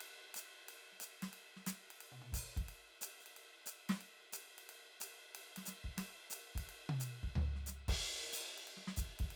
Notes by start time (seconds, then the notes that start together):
0.01 ride
0.35 hi-hat pedal, ride
0.69 ride
0.92 snare
1.00 hi-hat pedal, ride
1.23 snare, ride
1.33 ride
1.57 snare
1.67 snare, hi-hat pedal, ride
1.91 ride
2.01 ride
2.12 high tom
2.22 high tom
2.33 kick, hi-hat pedal, ride
2.57 kick, ride
2.69 ride
3.02 hi-hat pedal, ride
3.20 hi-hat pedal
3.26 ride
3.37 ride
3.66 hi-hat pedal, ride
3.89 snare, ride
4.01 ride
4.33 hi-hat pedal, ride
4.58 ride
4.69 ride
5.01 hi-hat pedal, ride
5.35 ride
5.57 snare, ride
5.66 snare, hi-hat pedal, ride
5.84 kick
5.98 snare, ride
6.30 hi-hat pedal, ride
6.55 kick, ride
6.69 ride
6.90 high tom
7.00 hi-hat pedal, ride
7.23 kick
7.36 floor tom
7.56 snare
7.67 snare, hi-hat pedal
7.88 kick, ride
8.27 snare
8.33 hi-hat pedal, ride
8.52 hi-hat pedal
8.58 ride
8.68 ride
8.77 snare
8.88 snare
8.97 kick, hi-hat pedal, ride
9.19 kick, ride
9.31 ride